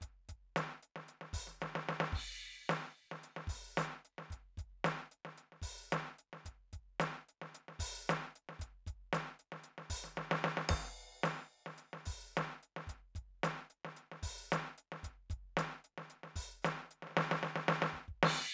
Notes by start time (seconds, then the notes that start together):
0.01 kick, closed hi-hat
0.29 kick, closed hi-hat
0.56 snare, closed hi-hat
0.83 closed hi-hat
0.96 snare
1.08 closed hi-hat
1.21 snare
1.33 kick, open hi-hat
1.47 snare
1.60 snare, hi-hat pedal
1.75 snare
1.89 snare
2.00 snare
2.12 kick, crash
2.69 snare, closed hi-hat
2.97 closed hi-hat
3.11 snare
3.23 closed hi-hat
3.36 snare
3.47 kick, open hi-hat
3.77 snare, hi-hat pedal, open hi-hat
4.05 closed hi-hat
4.18 snare
4.30 kick, closed hi-hat
4.57 kick, closed hi-hat
4.84 snare, closed hi-hat
5.11 closed hi-hat
5.25 snare
5.38 closed hi-hat
5.52 snare
5.62 kick, open hi-hat
5.91 snare, closed hi-hat, hi-hat pedal
6.19 closed hi-hat
6.33 snare
6.45 kick, closed hi-hat
6.73 kick, closed hi-hat
7.00 snare, closed hi-hat
7.29 closed hi-hat
7.42 snare
7.55 closed hi-hat
7.68 snare
7.79 kick, open hi-hat
8.08 snare, closed hi-hat, hi-hat pedal
8.35 closed hi-hat
8.49 snare
8.59 kick, closed hi-hat
8.87 kick, closed hi-hat
9.13 snare, closed hi-hat
9.39 closed hi-hat
9.52 snare
9.64 closed hi-hat
9.78 snare
9.90 kick, open hi-hat
10.04 snare
10.15 snare, hi-hat pedal
10.31 snare
10.44 snare
10.57 snare
10.69 kick, snare, ride
11.24 snare, closed hi-hat
11.52 closed hi-hat
11.66 snare
11.78 closed hi-hat
11.93 snare
12.05 kick, open hi-hat
12.34 snare, closed hi-hat, hi-hat pedal
12.63 closed hi-hat
12.76 snare
12.87 kick, closed hi-hat
13.15 kick, closed hi-hat
13.43 snare, closed hi-hat
13.70 closed hi-hat
13.85 snare
13.97 closed hi-hat
14.12 snare
14.23 kick, open hi-hat
14.50 snare, closed hi-hat, hi-hat pedal
14.78 closed hi-hat
14.92 snare
15.03 kick, closed hi-hat
15.30 kick, closed hi-hat
15.57 snare, closed hi-hat
15.84 closed hi-hat
15.98 snare
16.10 closed hi-hat
16.23 snare
16.36 kick, open hi-hat
16.62 snare, closed hi-hat, hi-hat pedal
16.85 snare
16.91 closed hi-hat
17.02 snare
17.07 snare
17.11 snare
17.17 snare
17.31 snare
17.43 snare
17.56 snare
17.68 snare
17.82 snare
17.93 kick
18.08 kick
18.23 snare, crash